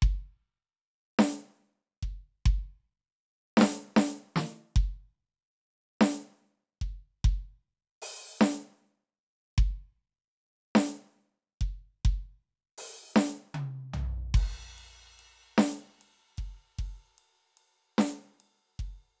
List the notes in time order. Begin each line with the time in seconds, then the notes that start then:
0.02 kick
1.19 snare
2.02 kick
2.46 kick
3.57 snare
3.61 snare
3.96 snare
4.36 snare
4.76 kick
6.01 snare
6.17 snare
6.81 kick
7.24 kick
8.02 open hi-hat
8.39 snare, hi-hat pedal
8.55 snare
9.58 kick
10.75 snare
11.61 kick
12.05 kick
12.78 open hi-hat
13.13 snare, hi-hat pedal
13.54 high tom
13.94 floor tom
14.34 kick, ride, crash
14.78 ride
15.19 ride
15.58 snare, ride
16.01 ride
16.38 kick, ride
16.79 kick, ride
17.18 ride
17.57 ride
17.98 snare, ride
18.40 ride
18.79 kick, ride